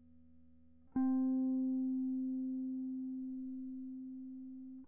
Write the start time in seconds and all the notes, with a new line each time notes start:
0.97 C4